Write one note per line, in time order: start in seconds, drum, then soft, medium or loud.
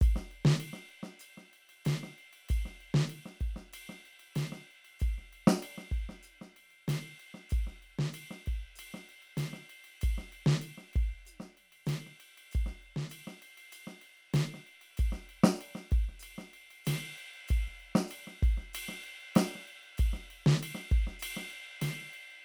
0.01 kick medium
0.01 hi-hat pedal medium
0.01 ride medium
0.16 snare soft
0.31 ride soft
0.45 snare loud
0.55 hi-hat pedal medium
0.60 ride medium
0.73 snare soft
0.89 ride soft
1.03 snare soft
1.19 hi-hat pedal medium
1.19 ride soft
1.37 snare soft
1.53 ride soft
1.69 ride bell soft
1.85 snare medium
1.85 hi-hat pedal medium
1.85 ride bell medium
2.03 snare soft
2.18 ride soft
2.33 ride soft
2.48 kick medium
2.48 hi-hat pedal medium
2.48 ride bell medium
2.65 snare soft
2.80 ride soft
2.94 snare loud
3.07 hi-hat pedal medium
3.07 ride bell medium
3.25 snare soft
3.40 kick soft
3.40 ride soft
3.56 snare soft
3.73 hi-hat pedal medium
3.73 ride medium
3.89 snare soft
4.05 ride soft
4.19 ride soft
4.35 snare medium
4.35 hi-hat pedal medium
4.35 ride bell medium
4.52 snare soft
4.71 ride soft
4.84 ride soft
4.99 kick medium
4.99 hi-hat pedal medium
4.99 ride bell soft
5.18 snare soft
5.32 ride soft
5.47 snare loud
5.57 hi-hat pedal medium
5.62 ride medium
5.78 snare soft
5.91 kick soft
5.91 ride soft
6.09 snare soft
6.23 floor tom soft
6.23 hi-hat pedal medium
6.23 ride soft
6.41 snare soft
6.56 ride soft
6.70 ride bell soft
6.88 snare medium
6.88 hi-hat pedal medium
6.88 ride medium
7.19 ride soft
7.34 snare soft
7.49 kick medium
7.49 hi-hat pedal medium
7.49 ride bell soft
7.67 snare soft
7.82 ride soft
7.99 snare medium
8.12 hi-hat pedal medium
8.12 ride medium
8.31 snare soft
8.46 kick soft
8.46 ride soft
8.75 hi-hat pedal medium
8.75 ride medium
8.94 snare soft
9.09 ride soft
9.22 ride soft
9.37 snare medium
9.37 hi-hat pedal medium
9.37 ride bell medium
9.53 snare soft
9.69 ride soft
9.84 ride soft
10.01 kick medium
10.01 hi-hat pedal medium
10.01 ride medium
10.18 snare soft
10.32 ride soft
10.46 snare loud
10.61 hi-hat pedal medium
10.61 ride medium
10.77 snare soft
10.93 kick medium
10.93 ride soft
11.25 hi-hat pedal medium
11.25 ride soft
11.25 floor tom soft
11.40 snare soft
11.57 ride soft
11.72 ride soft
11.86 snare medium
11.86 hi-hat pedal medium
11.86 ride bell medium
12.06 snare soft
12.20 ride soft
12.37 ride soft
12.51 kick soft
12.51 hi-hat pedal medium
12.51 ride soft
12.66 snare soft
12.82 ride soft
12.96 snare medium
13.10 hi-hat pedal medium
13.10 ride medium
13.27 snare soft
13.42 ride soft
13.57 ride soft
13.72 hi-hat pedal medium
13.72 ride medium
13.87 snare soft
14.01 ride soft
14.17 ride soft
14.33 snare loud
14.33 hi-hat pedal medium
14.33 ride medium
14.54 snare soft
14.66 ride soft
14.81 ride soft
14.97 kick medium
14.97 hi-hat pedal medium
14.97 ride medium
15.12 snare soft
15.29 ride soft
15.43 snare loud
15.55 hi-hat pedal medium
15.60 ride medium
15.75 snare soft
15.91 kick medium
15.91 ride soft
16.08 snare soft
16.19 hi-hat pedal medium
16.19 ride medium
16.38 snare soft
16.53 ride soft
16.70 ride soft
16.85 snare medium
16.85 hi-hat pedal medium
16.85 ride loud
17.18 ride soft
17.33 ride soft
17.48 kick medium
17.48 hi-hat pedal medium
17.48 ride medium
17.67 snare soft
17.80 ride soft
17.95 snare loud
18.08 hi-hat pedal medium
18.08 ride medium
18.27 snare soft
18.42 kick medium
18.42 ride soft
18.57 snare soft
18.73 hi-hat pedal medium
18.73 ride loud
18.88 snare soft
19.03 ride soft
19.20 ride soft
19.35 snare loud
19.35 hi-hat pedal medium
19.35 ride medium
19.55 snare soft
19.67 ride soft
19.83 ride soft
19.97 kick medium
19.97 hi-hat pedal medium
19.97 ride medium
20.13 snare soft
20.30 ride soft
20.46 snare loud
20.57 hi-hat pedal medium
20.62 ride medium
20.75 snare soft
20.91 kick medium
20.91 ride soft
21.07 snare soft
21.19 hi-hat pedal medium
21.19 ride loud
21.36 snare soft
21.50 ride soft
21.66 ride soft
21.81 snare medium
21.81 hi-hat pedal medium
21.81 ride medium
22.01 snare soft
22.13 ride soft
22.30 ride soft